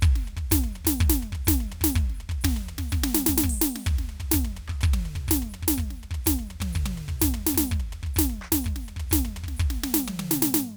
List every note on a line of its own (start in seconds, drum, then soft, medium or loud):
0.01 kick loud
0.01 floor tom medium
0.01 hi-hat pedal medium
0.16 snare medium
0.24 floor tom medium
0.24 hi-hat pedal soft
0.37 kick medium
0.37 floor tom medium
0.50 kick medium
0.50 snare loud
0.50 hi-hat pedal medium
0.64 floor tom medium
0.72 floor tom medium
0.72 hi-hat pedal soft
0.85 kick medium
0.85 snare loud
0.98 kick loud
0.98 floor tom medium
0.98 hi-hat pedal medium
1.10 snare loud
1.19 floor tom medium
1.19 hi-hat pedal soft
1.32 kick medium
1.32 floor tom medium
1.45 kick loud
1.45 snare loud
1.45 hi-hat pedal medium
1.60 floor tom medium
1.67 hi-hat pedal soft
1.72 floor tom medium
1.81 kick medium
1.81 snare loud
1.92 kick loud
1.92 hi-hat pedal medium
1.98 floor tom medium
2.10 snare soft
2.15 hi-hat pedal soft
2.20 floor tom medium
2.29 kick medium
2.29 floor tom medium
2.41 kick medium
2.41 snare loud
2.41 hi-hat pedal medium
2.56 floor tom medium
2.63 hi-hat pedal soft
2.69 floor tom medium
2.78 kick medium
2.78 snare medium
2.89 kick medium
2.89 snare medium
2.89 hi-hat pedal medium
3.04 snare loud
3.11 snare loud
3.11 hi-hat pedal soft
3.26 kick medium
3.26 snare loud
3.35 snare loud
3.35 hi-hat pedal medium
3.44 kick medium
3.50 open hi-hat loud
3.62 snare loud
3.76 snare medium
3.84 kick loud
3.84 floor tom loud
3.84 hi-hat pedal medium
3.98 snare medium
4.04 hi-hat pedal soft
4.09 floor tom medium
4.20 kick medium
4.20 floor tom medium
4.31 kick medium
4.31 snare loud
4.31 hi-hat pedal medium
4.45 floor tom medium
4.54 floor tom medium
4.54 hi-hat pedal soft
4.68 kick medium
4.68 cross-stick medium
4.81 kick loud
4.81 floor tom medium
4.81 hi-hat pedal medium
4.94 high tom loud
5.03 floor tom medium
5.03 hi-hat pedal soft
5.15 kick medium
5.15 floor tom medium
5.28 kick medium
5.28 snare loud
5.28 hi-hat pedal medium
5.42 floor tom medium
5.49 hi-hat pedal medium
5.54 floor tom medium
5.63 kick medium
5.68 snare loud
5.75 kick medium
5.75 hi-hat pedal medium
5.80 floor tom medium
5.91 snare soft
5.96 hi-hat pedal soft
6.03 floor tom medium
6.11 kick medium
6.11 floor tom medium
6.25 kick medium
6.25 snare loud
6.25 hi-hat pedal medium
6.39 floor tom soft
6.46 hi-hat pedal soft
6.50 floor tom medium
6.60 kick medium
6.60 high tom loud
6.73 kick medium
6.73 floor tom medium
6.73 hi-hat pedal medium
6.86 high tom loud
6.94 floor tom medium
6.94 hi-hat pedal soft
7.08 kick medium
7.08 floor tom medium
7.20 kick medium
7.20 snare loud
7.20 hi-hat pedal medium
7.34 floor tom medium
7.41 hi-hat pedal soft
7.47 snare loud
7.54 kick medium
7.54 snare loud
7.67 hi-hat pedal medium
7.71 kick medium
7.80 floor tom medium
7.89 floor tom medium
7.89 hi-hat pedal soft
8.03 kick medium
8.03 floor tom soft
8.14 kick medium
8.14 hi-hat pedal medium
8.19 snare loud
8.30 floor tom soft
8.41 percussion medium
8.52 kick medium
8.52 snare loud
8.61 floor tom medium
8.61 hi-hat pedal medium
8.66 kick medium
8.76 snare medium
8.83 hi-hat pedal soft
8.88 floor tom medium
8.96 kick medium
8.96 floor tom medium
9.10 kick medium
9.10 snare loud
9.10 hi-hat pedal medium
9.25 floor tom medium
9.36 floor tom medium
9.44 kick medium
9.48 snare medium
9.57 kick medium
9.57 floor tom medium
9.57 hi-hat pedal medium
9.70 snare medium
9.79 hi-hat pedal soft
9.84 snare loud
9.94 snare loud
10.04 hi-hat pedal medium
10.04 high tom loud
10.19 high tom loud
10.31 snare loud
10.42 snare loud
10.54 snare loud